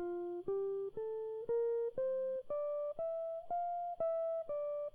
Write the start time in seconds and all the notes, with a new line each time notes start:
0.00 F4
0.49 G4
0.98 A4
1.49 A#4
1.98 C5
2.51 D5
2.99 E5
3.51 F5
4.01 E5
4.50 D5